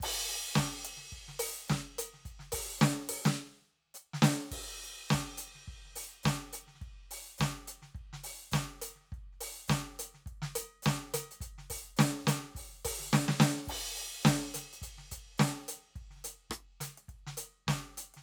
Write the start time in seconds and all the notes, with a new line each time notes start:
0.00 kick, hi-hat pedal, crash
0.28 open hi-hat
0.54 kick, snare, hi-hat pedal
0.85 closed hi-hat
0.97 snare
1.12 kick, closed hi-hat
1.28 snare
1.39 open hi-hat
1.68 kick, snare, hi-hat pedal
1.98 closed hi-hat
2.13 snare
2.18 snare
2.21 closed hi-hat, kick, snare
2.39 snare
2.52 open hi-hat, kick
2.78 snare, hi-hat pedal
3.09 kick, open hi-hat
3.24 snare, hi-hat pedal
3.94 hi-hat pedal
4.13 snare
4.22 snare
4.39 snare
4.51 kick, crash
4.83 open hi-hat
5.09 snare, hi-hat pedal
5.13 kick
5.38 closed hi-hat
5.55 snare
5.68 kick
5.85 snare
5.94 open hi-hat, snare
6.23 kick, snare, hi-hat pedal
6.53 open hi-hat
6.67 snare
6.75 snare
6.80 kick, snare, closed hi-hat
7.11 open hi-hat
7.38 kick, snare, hi-hat pedal
7.68 closed hi-hat
7.82 snare
7.95 kick, closed hi-hat
8.13 snare
8.24 open hi-hat
8.52 kick, snare, hi-hat pedal
8.82 open hi-hat
8.96 snare
9.00 snare
9.04 snare
9.08 snare
9.11 kick, snare, closed hi-hat
9.32 snare
9.39 open hi-hat, snare
9.68 kick, snare, hi-hat pedal
9.99 closed hi-hat
10.14 snare
10.26 kick, closed hi-hat
10.42 snare
10.55 closed hi-hat, kick
10.82 kick, snare, hi-hat pedal
11.14 closed hi-hat, snare
11.31 closed hi-hat
11.41 closed hi-hat, kick
11.58 snare
11.70 open hi-hat, kick
11.97 closed hi-hat, snare, hi-hat pedal
12.24 closed hi-hat, kick, snare
12.43 snare
12.55 open hi-hat, kick
12.72 snare
12.85 open hi-hat, kick
13.00 snare
13.05 snare
13.10 snare, hi-hat pedal
13.13 snare
13.28 snare
13.40 snare
13.56 snare
13.65 kick, hi-hat pedal, crash
13.95 open hi-hat
14.23 snare, hi-hat pedal
14.27 kick
14.54 closed hi-hat, snare
14.73 closed hi-hat
14.82 closed hi-hat, kick
14.98 snare
15.11 closed hi-hat, kick
15.38 snare, hi-hat pedal
15.68 closed hi-hat
15.96 kick, closed hi-hat
16.10 snare
16.15 snare
16.24 closed hi-hat, snare
16.50 kick, cross-stick
16.80 open hi-hat, snare
16.98 closed hi-hat
17.08 kick, closed hi-hat
17.27 snare
17.37 closed hi-hat
17.67 kick, snare, closed hi-hat
17.97 closed hi-hat
18.14 snare, closed hi-hat